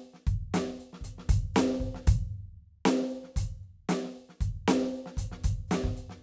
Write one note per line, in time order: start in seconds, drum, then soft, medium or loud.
0.01 closed hi-hat soft
0.14 snare soft
0.27 closed hi-hat medium
0.27 kick loud
0.54 closed hi-hat loud
0.54 snare loud
0.80 closed hi-hat soft
0.93 snare soft
1.01 closed hi-hat medium
1.01 kick soft
1.19 snare soft
1.29 closed hi-hat loud
1.29 kick loud
1.55 closed hi-hat loud
1.55 snare loud
1.55 hi-hat pedal soft
1.72 snare soft
1.80 kick medium
1.80 closed hi-hat soft
1.95 snare soft
2.07 closed hi-hat loud
2.07 kick loud
2.33 closed hi-hat soft
2.86 closed hi-hat loud
2.86 snare loud
3.02 snare soft
3.05 snare soft
3.11 kick soft
3.11 closed hi-hat soft
3.24 snare soft
3.37 closed hi-hat loud
3.37 kick medium
3.64 closed hi-hat soft
3.89 closed hi-hat loud
3.89 snare loud
4.05 snare soft
4.16 kick soft
4.16 closed hi-hat soft
4.29 snare soft
4.41 closed hi-hat medium
4.41 kick medium
4.68 closed hi-hat loud
4.68 snare loud
4.83 snare soft
4.94 closed hi-hat soft
5.06 snare soft
5.16 closed hi-hat loud
5.16 kick medium
5.16 snare soft
5.32 snare soft
5.44 closed hi-hat loud
5.44 kick medium
5.68 closed hi-hat loud
5.68 snare loud
5.68 hi-hat pedal soft
5.84 kick medium
5.84 snare soft
5.97 closed hi-hat soft
6.10 snare soft